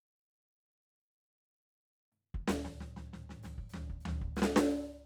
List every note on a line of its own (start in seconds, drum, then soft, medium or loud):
2.12 mid tom soft
2.34 kick soft
2.47 snare loud
2.47 hi-hat pedal medium
2.47 floor tom medium
2.64 snare soft
2.64 floor tom medium
2.80 snare soft
2.80 floor tom soft
2.96 snare soft
2.96 floor tom soft
3.13 snare soft
3.13 floor tom soft
3.29 snare soft
3.29 floor tom soft
3.43 snare soft
3.43 floor tom soft
3.43 hi-hat pedal soft
3.58 kick soft
3.69 hi-hat pedal soft
3.73 snare soft
3.73 floor tom medium
3.89 kick soft
4.00 hi-hat pedal soft
4.05 snare soft
4.05 floor tom medium
4.21 kick soft
4.36 snare medium
4.36 hi-hat pedal soft
4.42 snare loud
4.56 snare loud
4.69 hi-hat pedal soft